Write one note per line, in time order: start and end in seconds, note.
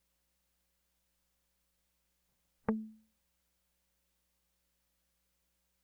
2.69 3.10 A3